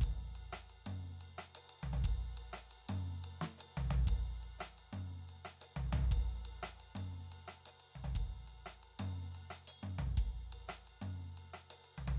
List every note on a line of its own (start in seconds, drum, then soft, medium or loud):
0.01 kick medium
0.01 ride loud
0.35 ride medium
0.52 cross-stick medium
0.52 hi-hat pedal medium
0.69 ride medium
0.86 mid tom medium
0.86 ride loud
1.21 ride medium
1.38 cross-stick medium
1.54 hi-hat pedal medium
1.54 ride loud
1.69 ride medium
1.83 floor tom medium
2.04 kick medium
2.04 ride loud
2.37 ride loud
2.53 cross-stick medium
2.53 hi-hat pedal medium
2.71 ride medium
2.89 mid tom loud
2.89 ride loud
3.24 ride loud
3.41 snare medium
3.58 hi-hat pedal medium
3.58 ride loud
3.77 floor tom medium
3.90 floor tom loud
4.07 kick medium
4.07 ride loud
4.43 ride medium
4.58 cross-stick medium
4.58 hi-hat pedal medium
4.78 ride medium
4.92 mid tom medium
4.92 ride medium
5.29 ride medium
5.45 cross-stick medium
5.61 hi-hat pedal medium
5.61 ride loud
5.76 floor tom medium
5.92 floor tom loud
5.92 ride medium
6.11 kick medium
6.11 ride loud
6.45 ride loud
6.63 cross-stick medium
6.63 hi-hat pedal medium
6.80 ride medium
6.95 mid tom medium
6.95 ride loud
7.32 ride medium
7.48 cross-stick soft
7.65 hi-hat pedal medium
7.65 ride medium
7.80 ride medium
7.95 floor tom soft
8.04 floor tom medium
8.15 kick medium
8.15 ride loud
8.47 ride medium
8.66 cross-stick medium
8.66 hi-hat pedal medium
8.83 ride medium
8.99 mid tom medium
8.99 ride loud
9.35 ride medium
9.50 cross-stick medium
9.67 hi-hat pedal medium
9.67 ride bell medium
9.83 mid tom medium
9.98 floor tom medium
10.17 kick medium
10.17 ride medium
10.52 ride loud
10.67 cross-stick medium
10.67 hi-hat pedal medium
10.87 ride medium
11.01 mid tom medium
11.01 ride medium
11.37 ride medium
11.53 cross-stick soft
11.70 hi-hat pedal medium
11.70 ride loud
11.84 ride medium
11.98 floor tom medium
12.07 floor tom medium